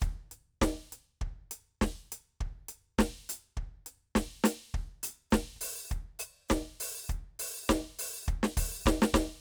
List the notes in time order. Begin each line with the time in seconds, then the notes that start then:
0.01 kick, hi-hat pedal
0.31 closed hi-hat
0.62 kick, snare
0.92 closed hi-hat
1.21 kick
1.51 closed hi-hat
1.81 kick, snare
2.12 closed hi-hat
2.41 kick, ride
2.69 closed hi-hat
2.99 kick, snare
3.29 closed hi-hat
3.57 kick, closed hi-hat
3.86 closed hi-hat
4.15 kick, snare
4.44 closed hi-hat, snare
4.74 kick
5.03 closed hi-hat
5.31 kick, snare, hi-hat pedal
5.56 kick
5.61 open hi-hat
5.90 kick, hi-hat pedal
6.19 open hi-hat, hi-hat pedal
6.49 kick, snare, hi-hat pedal
6.80 open hi-hat, hi-hat pedal
7.09 kick, hi-hat pedal
7.39 open hi-hat
7.68 kick, snare, hi-hat pedal
7.99 open hi-hat, hi-hat pedal
8.26 kick, closed hi-hat, hi-hat pedal
8.43 snare
8.57 open hi-hat, kick
8.85 kick, snare, hi-hat pedal
9.02 snare
9.14 kick, snare